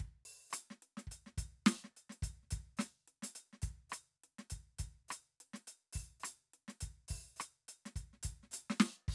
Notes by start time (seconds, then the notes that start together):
0.00 kick, closed hi-hat
0.25 open hi-hat
0.50 closed hi-hat, cross-stick, hi-hat pedal
0.70 snare
0.82 closed hi-hat
0.97 snare, closed hi-hat
1.07 kick
1.11 closed hi-hat
1.26 snare
1.38 closed hi-hat, kick
1.66 closed hi-hat, snare, hi-hat pedal
1.84 snare
1.96 closed hi-hat
2.09 snare, closed hi-hat
2.22 closed hi-hat, kick
2.43 snare
2.50 closed hi-hat, kick
2.77 closed hi-hat, snare, hi-hat pedal
3.08 closed hi-hat
3.22 closed hi-hat, snare
3.35 closed hi-hat
3.53 snare
3.62 open hi-hat, kick
3.89 closed hi-hat, cross-stick, hi-hat pedal
4.23 closed hi-hat
4.38 snare, closed hi-hat
4.50 closed hi-hat, kick
4.78 closed hi-hat, kick
5.08 closed hi-hat, cross-stick, hi-hat pedal
5.40 closed hi-hat
5.53 snare, closed hi-hat
5.67 closed hi-hat
5.93 open hi-hat, kick
6.20 cross-stick, hi-hat pedal
6.24 closed hi-hat
6.53 closed hi-hat
6.68 snare, closed hi-hat
6.80 closed hi-hat, kick
7.08 open hi-hat, kick
7.36 cross-stick, hi-hat pedal
7.40 closed hi-hat
7.68 closed hi-hat
7.85 snare, closed hi-hat
7.96 closed hi-hat, kick
8.13 snare
8.23 closed hi-hat, kick
8.43 snare
8.51 closed hi-hat, hi-hat pedal
8.70 snare
8.80 snare
9.08 kick, crash